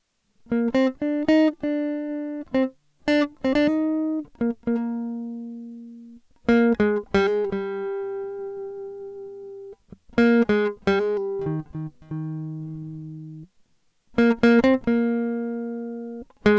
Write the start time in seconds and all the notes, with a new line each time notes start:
0.53 A#3
0.76 C4
1.03 D4
1.30 D#4
1.65 D4
2.56 C4
3.09 D4
3.46 C4
3.57 D4
3.69 D#4
4.42 A#3
4.68 A#3
6.50 A#3
6.81 G#3
7.16 G3
7.28 G#4
7.54 G3
10.19 A#3
10.50 G#3
10.88 G3
11.01 G#4
11.19 G3
11.48 D#3
11.75 D#3
12.12 D#3
12.20 D#3
14.20 A#3
14.45 A#3
14.65 C4
14.89 A#3
16.47 G#3